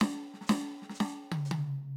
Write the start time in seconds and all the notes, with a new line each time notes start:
0.00 snare, hi-hat pedal
0.34 snare
0.41 snare
0.47 snare, hi-hat pedal
0.82 snare
0.89 snare
0.94 hi-hat pedal
1.00 snare
1.32 high tom
1.45 hi-hat pedal
1.51 high tom